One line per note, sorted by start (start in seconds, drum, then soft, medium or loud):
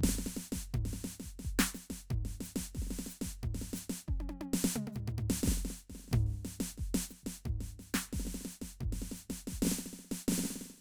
0.01 kick soft
0.01 snare loud
0.09 snare medium
0.15 snare soft
0.18 snare medium
0.26 snare medium
0.34 snare medium
0.34 hi-hat pedal soft
0.52 kick soft
0.52 snare medium
0.74 kick soft
0.74 floor tom medium
0.85 snare soft
0.93 snare soft
1.04 snare medium
1.04 hi-hat pedal soft
1.20 snare soft
1.24 kick soft
1.39 snare soft
1.45 kick soft
1.59 snare loud
1.74 snare soft
1.74 hi-hat pedal medium
1.90 kick soft
1.90 snare soft
2.10 kick soft
2.10 floor tom medium
2.25 snare soft
2.40 snare soft
2.40 hi-hat pedal medium
2.56 kick soft
2.56 snare medium
2.75 kick soft
2.75 snare soft
2.82 snare soft
2.87 snare soft
2.90 snare soft
2.99 snare soft
3.06 snare soft
3.06 hi-hat pedal medium
3.21 kick soft
3.21 snare medium
3.43 kick soft
3.43 floor tom medium
3.54 snare soft
3.61 snare soft
3.73 snare medium
3.73 hi-hat pedal loud
3.89 snare medium
4.08 kick soft
4.08 high tom soft
4.20 high tom medium
4.29 high tom medium
4.41 high tom medium
4.53 snare medium
4.64 snare loud
4.71 hi-hat pedal soft
4.76 mid tom loud
4.87 mid tom medium
4.92 floor tom medium
4.92 hi-hat pedal soft
5.07 floor tom medium
5.18 floor tom medium
5.30 snare medium
5.43 kick medium
5.43 snare medium
5.47 snare medium
5.52 snare soft
5.57 snare soft
5.65 snare soft
5.70 snare soft
5.76 hi-hat pedal soft
5.90 kick soft
5.90 snare soft
5.95 snare soft
5.99 snare soft
6.04 snare soft
6.08 kick soft
6.08 snare soft
6.12 snare soft
6.12 floor tom loud
6.26 snare soft
6.30 snare soft
6.33 snare soft
6.45 snare soft
6.45 hi-hat pedal soft
6.59 kick soft
6.59 snare medium
6.78 kick soft
6.78 snare soft
6.94 snare medium
7.08 snare soft
7.08 hi-hat pedal medium
7.23 kick soft
7.23 snare medium
7.45 kick soft
7.45 floor tom medium
7.61 snare soft
7.79 snare soft
7.79 hi-hat pedal soft
7.94 kick soft
7.94 snare medium
8.13 kick soft
8.13 snare soft
8.20 snare soft
8.25 snare soft
8.27 snare soft
8.34 snare soft
8.41 snare soft
8.45 snare soft
8.49 hi-hat pedal medium
8.61 kick soft
8.61 snare soft
8.80 kick soft
8.80 floor tom medium
8.92 snare soft
9.02 snare soft
9.11 snare soft
9.11 hi-hat pedal medium
9.29 kick soft
9.29 snare medium
9.47 snare medium
9.52 kick soft
9.62 snare medium
9.65 snare medium
9.67 snare medium
9.71 snare medium
9.79 snare soft
9.86 snare soft
9.93 snare soft
9.99 snare soft
10.04 snare soft
10.11 snare soft
10.11 snare medium
10.28 snare medium
10.32 snare medium
10.38 snare medium
10.44 snare soft
10.44 snare medium
10.50 snare soft
10.56 snare soft
10.61 snare soft
10.66 snare soft
10.70 snare soft
10.74 snare soft
10.78 snare soft